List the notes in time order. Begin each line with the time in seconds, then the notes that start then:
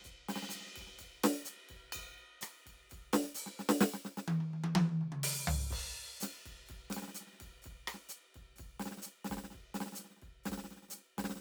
0.01 snare, hi-hat pedal
0.05 kick
0.10 kick
0.29 snare, ride
0.36 snare
0.42 snare
0.49 snare, hi-hat pedal
0.55 snare
0.60 snare
0.66 snare
0.73 kick, snare, ride
0.80 kick, snare
0.87 snare
0.98 kick, snare, hi-hat pedal, ride
1.05 kick
1.24 snare, ride
1.45 hi-hat pedal, ride
1.49 snare
1.56 snare
1.69 kick, ride
1.75 kick
1.92 kick, hi-hat pedal, ride bell
2.00 kick
2.18 ride
2.41 cross-stick, hi-hat pedal, ride
2.66 kick, snare, ride
2.73 snare
2.89 kick, hi-hat pedal, ride
3.13 snare, ride
3.24 snare
3.35 hi-hat pedal
3.46 snare
3.59 snare
3.69 snare
3.81 snare
3.94 snare
4.05 snare
4.17 snare
4.28 high tom
4.40 high tom
4.53 high tom
4.64 high tom
4.75 high tom
4.89 high tom
5.01 mid tom
5.12 mid tom
5.23 closed hi-hat
5.47 floor tom
5.71 kick, crash
5.77 kick
6.20 snare, hi-hat pedal, ride
6.46 kick, ride
6.51 kick
6.58 snare
6.61 snare
6.66 kick, hi-hat pedal, ride
6.90 snare, ride
6.97 snare
7.02 snare
7.08 snare
7.14 snare, hi-hat pedal, ride
7.21 snare
7.27 snare
7.33 snare
7.39 kick, snare, ride
7.44 kick, snare
7.48 snare
7.52 snare
7.62 kick, hi-hat pedal, ride
7.71 kick
7.88 cross-stick, ride
7.94 snare
8.09 hi-hat pedal, ride
8.16 snare
8.34 kick, ride
8.41 kick
8.56 kick, snare, hi-hat pedal, ride
8.65 kick
8.80 snare, ride
8.86 snare
8.91 snare
8.97 snare
9.02 snare, hi-hat pedal, ride
9.25 snare, ride
9.29 kick, snare
9.34 kick, snare
9.44 snare
9.50 kick, snare, ride
9.59 kick
9.74 snare, ride
9.80 snare
9.86 snare
9.92 snare, hi-hat pedal
9.98 snare, ride
10.04 snare
10.10 snare
10.17 snare
10.22 kick, snare, ride
10.27 kick
10.44 snare, hi-hat pedal, ride
10.48 kick, snare
10.53 kick
10.58 snare
10.64 snare
10.71 snare, ride
10.76 snare
10.82 snare
10.89 snare, hi-hat pedal
10.93 snare, ride
10.97 snare
11.18 kick, snare, ride
11.22 kick, snare
11.30 snare
11.35 snare, hi-hat pedal